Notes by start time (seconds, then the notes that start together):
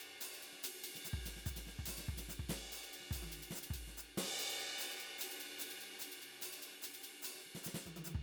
0.01 ride
0.22 hi-hat pedal, ride
0.34 ride
0.43 ride
0.53 snare
0.64 hi-hat pedal, ride
0.83 hi-hat pedal, ride
0.96 snare, ride
1.05 snare, hi-hat pedal, ride
1.14 kick
1.24 snare, hi-hat pedal, ride
1.37 snare
1.47 kick, hi-hat pedal
1.57 snare, ride
1.64 snare, hi-hat pedal, ride
1.80 kick
1.86 snare, hi-hat pedal, ride
1.98 snare, ride
2.07 kick, hi-hat pedal
2.18 snare, ride
2.29 snare, hi-hat pedal
2.40 kick
2.50 snare, ride
2.73 hi-hat pedal, ride
2.84 ride
2.92 hi-hat pedal, ride
3.01 snare
3.12 kick, hi-hat pedal, ride
3.23 high tom
3.33 hi-hat pedal, ride
3.43 ride
3.52 snare
3.56 hi-hat pedal
3.64 ride
3.71 kick, ride
3.88 snare
3.98 hi-hat pedal
4.18 snare, hi-hat pedal, ride
4.40 hi-hat pedal, ride
4.50 ride
4.59 hi-hat pedal, ride
4.67 snare
4.79 hi-hat pedal, ride
4.92 ride
4.98 hi-hat pedal, ride
5.19 hi-hat pedal, ride
5.32 ride
5.38 hi-hat pedal, ride
5.60 hi-hat pedal, ride
5.71 ride
5.78 hi-hat pedal, ride
6.00 hi-hat pedal, ride
6.12 ride
6.19 hi-hat pedal, ride
6.42 hi-hat pedal, ride
6.53 ride
6.63 ride
6.72 snare
6.83 hi-hat pedal, ride
6.95 ride
7.02 hi-hat pedal, ride
7.23 hi-hat pedal, ride
7.36 snare
7.42 hi-hat pedal
7.47 snare
7.56 snare
7.64 snare, hi-hat pedal
7.75 snare
7.83 kick, hi-hat pedal
7.87 high tom
7.97 high tom
8.05 hi-hat pedal, high tom
8.15 kick